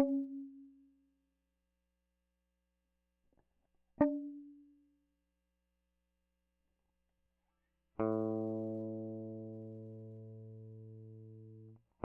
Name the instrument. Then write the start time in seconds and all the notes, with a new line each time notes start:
electric guitar
0.00 C#4
4.01 D4
8.01 A2